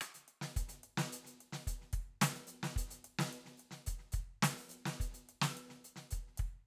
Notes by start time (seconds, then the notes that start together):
0.01 closed hi-hat, cross-stick
0.14 closed hi-hat, snare
0.28 closed hi-hat
0.41 snare
0.56 closed hi-hat, kick
0.62 kick
0.68 closed hi-hat, snare
0.72 snare
0.83 closed hi-hat
0.97 snare
1.12 closed hi-hat
1.24 closed hi-hat, snare
1.28 snare
1.41 closed hi-hat
1.53 snare
1.67 closed hi-hat, kick
1.81 snare
1.91 kick, snare, closed hi-hat
2.02 kick
2.21 closed hi-hat, snare
2.35 snare, open hi-hat
2.47 hi-hat pedal
2.63 snare
2.76 closed hi-hat, kick
2.82 kick
2.88 closed hi-hat, snare
2.93 snare
3.04 closed hi-hat
3.19 snare
3.33 closed hi-hat
3.46 snare
3.57 closed hi-hat, hi-hat pedal
3.71 snare
3.86 closed hi-hat, kick
3.99 snare
4.06 snare
4.09 closed hi-hat, snare
4.14 kick
4.20 kick
4.22 kick
4.42 closed hi-hat, snare
4.55 open hi-hat, snare
4.69 closed hi-hat, hi-hat pedal
4.86 snare
4.99 closed hi-hat, kick, snare
5.11 closed hi-hat, snare
5.16 snare
5.21 snare
5.29 closed hi-hat
5.42 snare
5.57 closed hi-hat
5.70 snare
5.84 closed hi-hat
5.96 snare
6.11 closed hi-hat, kick
6.27 snare
6.34 snare, closed hi-hat
6.39 kick
6.48 kick